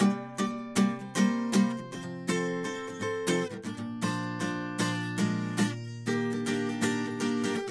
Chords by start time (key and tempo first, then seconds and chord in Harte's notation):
G minor, 119 BPM
0.00 C:sus2(b7)
1.77 F:7/5
3.79 A#:9
5.81 D#:maj7/5